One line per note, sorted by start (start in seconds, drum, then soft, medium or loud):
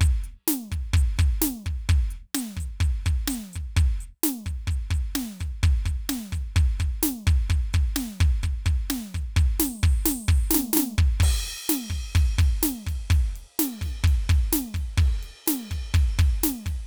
0.01 closed hi-hat loud
0.01 kick loud
0.24 snare soft
0.24 closed hi-hat medium
0.48 closed hi-hat loud
0.48 snare loud
0.64 snare soft
0.72 kick medium
0.72 closed hi-hat medium
0.94 closed hi-hat loud
0.94 kick loud
1.17 closed hi-hat medium
1.17 kick loud
1.17 snare soft
1.42 closed hi-hat loud
1.42 snare loud
1.66 kick medium
1.66 closed hi-hat soft
1.89 closed hi-hat medium
1.89 kick loud
2.09 snare soft
2.09 closed hi-hat medium
2.35 closed hi-hat loud
2.35 snare loud
2.57 closed hi-hat medium
2.57 kick medium
2.81 closed hi-hat medium
2.81 kick loud
3.06 closed hi-hat medium
3.06 kick loud
3.28 closed hi-hat loud
3.28 snare loud
3.54 closed hi-hat medium
3.54 kick medium
3.77 closed hi-hat medium
3.77 kick loud
4.01 closed hi-hat medium
4.24 closed hi-hat loud
4.24 snare loud
4.46 closed hi-hat medium
4.46 kick medium
4.68 closed hi-hat medium
4.68 kick medium
4.91 closed hi-hat medium
4.91 kick medium
5.16 closed hi-hat medium
5.16 snare loud
5.40 closed hi-hat medium
5.40 kick medium
5.63 closed hi-hat medium
5.63 kick loud
5.86 closed hi-hat medium
5.86 kick medium
6.10 closed hi-hat medium
6.10 snare loud
6.33 closed hi-hat medium
6.33 kick medium
6.56 closed hi-hat medium
6.56 kick loud
6.80 closed hi-hat medium
6.80 kick medium
7.03 closed hi-hat medium
7.03 snare loud
7.27 closed hi-hat medium
7.27 kick loud
7.50 closed hi-hat medium
7.50 kick loud
7.74 closed hi-hat medium
7.74 kick loud
7.96 closed hi-hat medium
7.96 snare loud
8.21 closed hi-hat medium
8.21 kick loud
8.43 closed hi-hat medium
8.43 kick medium
8.66 closed hi-hat medium
8.66 kick loud
8.90 closed hi-hat medium
8.90 snare loud
9.15 closed hi-hat medium
9.15 kick medium
9.37 closed hi-hat medium
9.37 kick loud
9.60 open hi-hat loud
9.60 snare loud
9.68 snare soft
9.83 open hi-hat medium
9.83 kick loud
9.83 snare soft
10.06 open hi-hat loud
10.06 snare loud
10.29 open hi-hat medium
10.29 kick loud
10.51 snare loud
10.51 hi-hat pedal soft
10.55 snare loud
10.74 snare loud
10.77 snare loud
10.99 kick loud
11.20 open hi-hat loud
11.20 kick loud
11.20 crash loud
11.67 snare loud
11.67 hi-hat pedal soft
11.67 ride loud
11.90 kick medium
11.90 ride soft
12.13 kick loud
12.13 hi-hat pedal soft
12.13 ride medium
12.39 kick loud
12.39 ride medium
12.63 snare loud
12.63 ride loud
12.87 kick medium
12.87 ride medium
13.11 kick loud
13.11 ride medium
13.36 ride medium
13.59 snare loud
13.59 ride medium
13.82 kick medium
13.82 ride medium
13.86 snare soft
14.04 kick loud
14.04 ride medium
14.30 kick loud
14.30 ride medium
14.53 snare loud
14.53 ride medium
14.75 kick medium
14.75 ride medium
14.98 kick loud
14.98 ride medium
15.23 ride medium
15.47 snare loud
15.47 ride medium
15.71 kick medium
15.71 ride medium
15.94 kick loud
15.94 ride medium
16.19 kick loud
16.19 ride medium
16.44 snare loud
16.44 ride loud
16.66 kick medium
16.66 ride medium